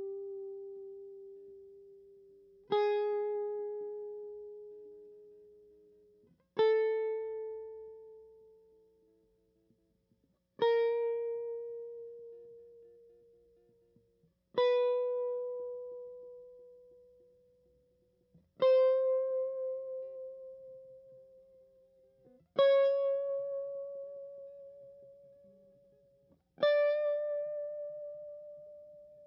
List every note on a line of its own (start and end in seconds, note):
2.74 4.79 G#4
6.60 8.21 A4
10.63 12.20 A#4
14.59 16.43 B4
18.63 20.56 C5
22.60 24.50 C#5
26.65 28.42 D5